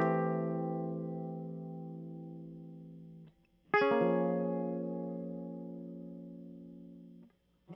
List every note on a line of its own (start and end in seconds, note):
0.00 3.28 G4
3.74 6.46 G#4
3.82 7.27 C#4
3.92 7.32 A#3
4.02 7.29 F3